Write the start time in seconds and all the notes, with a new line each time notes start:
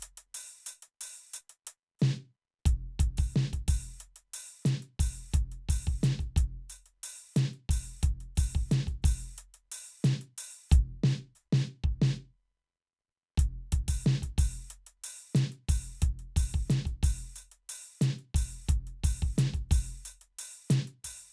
0.01 closed hi-hat, hi-hat pedal
0.18 closed hi-hat
0.35 open hi-hat
0.66 open hi-hat, hi-hat pedal
0.83 closed hi-hat
1.02 open hi-hat
1.34 open hi-hat, hi-hat pedal
1.50 closed hi-hat
1.68 open hi-hat
2.00 snare, hi-hat pedal
2.66 closed hi-hat, kick
3.00 open hi-hat, kick
3.18 open hi-hat, kick
3.34 snare, hi-hat pedal
3.54 kick, closed hi-hat
3.69 open hi-hat, kick
4.00 closed hi-hat, hi-hat pedal
4.17 closed hi-hat
4.34 open hi-hat
4.63 closed hi-hat, snare, hi-hat pedal
4.83 closed hi-hat
5.00 open hi-hat, kick
5.32 closed hi-hat, kick, hi-hat pedal
5.52 closed hi-hat
5.69 open hi-hat, kick
5.88 kick
6.01 closed hi-hat, snare, hi-hat pedal
6.20 kick, closed hi-hat
6.37 open hi-hat, kick
6.70 open hi-hat, hi-hat pedal
6.86 closed hi-hat
7.04 open hi-hat
7.34 closed hi-hat, snare, hi-hat pedal
7.54 closed hi-hat
7.70 open hi-hat, kick
8.01 closed hi-hat, kick, hi-hat pedal
8.21 closed hi-hat
8.36 open hi-hat, kick, hi-hat pedal
8.56 kick
8.69 closed hi-hat, snare, hi-hat pedal
8.88 kick, closed hi-hat
9.03 open hi-hat, kick, hi-hat pedal
9.38 closed hi-hat, hi-hat pedal
9.55 closed hi-hat
9.72 open hi-hat
10.03 closed hi-hat, snare, hi-hat pedal
10.22 closed hi-hat
10.38 open hi-hat
10.70 closed hi-hat, kick, hi-hat pedal
11.04 snare
11.36 hi-hat pedal
11.53 snare
11.84 kick
12.02 snare
13.38 closed hi-hat, kick
13.73 closed hi-hat, kick
13.89 open hi-hat, kick
14.05 snare, hi-hat pedal
14.23 kick, closed hi-hat
14.39 open hi-hat, kick
14.70 closed hi-hat, hi-hat pedal
14.87 closed hi-hat
15.04 open hi-hat
15.33 closed hi-hat, snare, hi-hat pedal
15.53 closed hi-hat
15.69 open hi-hat, kick, hi-hat pedal
16.00 closed hi-hat, kick, hi-hat pedal
16.20 closed hi-hat
16.37 open hi-hat, kick
16.55 kick
16.68 closed hi-hat, snare, hi-hat pedal
16.86 kick, closed hi-hat
17.03 open hi-hat, kick
17.36 open hi-hat, hi-hat pedal
17.52 closed hi-hat
17.70 open hi-hat
18.00 closed hi-hat, snare, hi-hat pedal
18.19 closed hi-hat
18.35 open hi-hat, kick
18.67 closed hi-hat, kick, hi-hat pedal
18.88 closed hi-hat
19.04 open hi-hat, kick
19.23 kick
19.36 closed hi-hat, snare, hi-hat pedal
19.54 kick, closed hi-hat
19.70 open hi-hat, kick, hi-hat pedal
20.05 open hi-hat, hi-hat pedal
20.22 closed hi-hat
20.39 open hi-hat
20.69 closed hi-hat, snare, hi-hat pedal
20.88 closed hi-hat
21.05 open hi-hat, kick